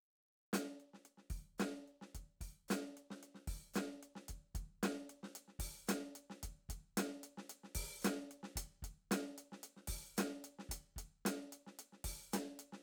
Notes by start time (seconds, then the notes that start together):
0.53 closed hi-hat, snare
0.80 closed hi-hat
0.93 snare
1.05 closed hi-hat
1.17 snare
1.30 kick, open hi-hat
1.58 snare, closed hi-hat, hi-hat pedal
1.87 closed hi-hat
2.01 snare
2.15 kick, closed hi-hat
2.41 kick, open hi-hat
2.68 closed hi-hat, snare, hi-hat pedal
2.97 closed hi-hat
3.10 snare
3.23 closed hi-hat
3.34 snare
3.47 kick, open hi-hat
3.74 snare, closed hi-hat, hi-hat pedal
4.03 closed hi-hat
4.15 snare
4.28 kick, closed hi-hat
4.55 kick, closed hi-hat
4.83 snare, closed hi-hat
5.09 closed hi-hat
5.23 snare
5.35 closed hi-hat
5.48 snare
5.59 kick, open hi-hat
5.87 snare, closed hi-hat, hi-hat pedal
6.15 closed hi-hat
6.30 snare
6.43 kick, closed hi-hat
6.69 kick, closed hi-hat
6.97 snare, closed hi-hat
7.23 closed hi-hat
7.37 snare
7.49 closed hi-hat
7.63 snare
7.75 kick, open hi-hat
8.02 snare, closed hi-hat, hi-hat pedal
8.31 closed hi-hat
8.43 snare
8.55 kick, closed hi-hat
8.82 kick, closed hi-hat
9.11 snare, closed hi-hat
9.38 closed hi-hat
9.52 snare
9.63 closed hi-hat
9.76 snare
9.87 kick, open hi-hat
10.17 snare, closed hi-hat, hi-hat pedal
10.44 closed hi-hat
10.59 snare
10.69 kick, closed hi-hat
10.96 kick, closed hi-hat
11.25 snare, closed hi-hat
11.52 closed hi-hat
11.67 snare
11.79 closed hi-hat
11.92 snare
12.04 kick, open hi-hat
12.32 snare, closed hi-hat, hi-hat pedal
12.59 closed hi-hat
12.72 snare